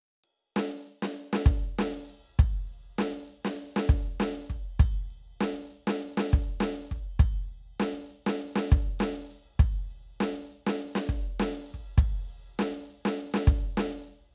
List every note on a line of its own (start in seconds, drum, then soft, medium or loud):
0.24 ride soft
0.56 snare loud
0.56 ride bell medium
1.02 snare loud
1.16 ride bell soft
1.33 snare loud
1.46 kick loud
1.46 ride bell medium
1.79 snare loud
1.79 ride loud
2.10 ride bell soft
2.39 kick loud
2.39 ride bell medium
2.67 ride soft
2.98 snare loud
2.98 ride bell medium
3.28 ride soft
3.45 snare loud
3.58 ride soft
3.76 snare loud
3.88 kick loud
3.88 snare soft
3.88 ride soft
4.20 snare loud
4.20 ride bell loud
4.50 kick medium
4.50 ride bell soft
4.79 kick loud
4.79 ride bell loud
5.10 ride soft
5.41 snare loud
5.41 ride bell medium
5.71 ride soft
5.87 snare loud
6.00 ride soft
6.17 snare loud
6.30 kick loud
6.30 ride bell medium
6.60 snare loud
6.60 ride bell medium
6.91 kick medium
6.91 ride soft
7.19 kick loud
7.19 ride bell medium
7.49 ride soft
7.80 snare loud
7.80 ride bell medium
8.10 ride soft
8.26 snare loud
8.55 snare loud
8.69 kick loud
8.69 ride bell soft
8.99 snare loud
8.99 ride medium
9.31 ride bell soft
9.59 kick loud
9.59 ride bell medium
9.91 ride bell soft
10.20 snare loud
10.20 ride bell medium
10.50 ride bell soft
10.67 snare loud
10.95 snare loud
11.09 kick medium
11.09 ride bell soft
11.39 snare loud
11.39 ride loud
11.71 kick soft
11.71 ride bell soft
11.97 kick loud
11.97 ride medium
12.29 ride bell soft
12.59 snare loud
12.59 ride bell medium
12.89 ride bell soft
13.05 snare loud
13.34 snare loud
13.47 kick loud
13.47 ride bell medium
13.77 snare loud
13.77 ride bell medium
14.07 ride bell soft